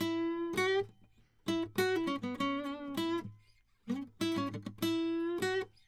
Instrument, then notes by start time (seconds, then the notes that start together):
acoustic guitar
0.01 E4
0.59 F#4
1.49 E4
1.79 F#4
1.97 E4
2.08 C#4
2.25 B3
2.41 C#4
2.98 E4
3.91 C#4
4.22 E4
4.38 C#4
4.83 E4
5.43 F#4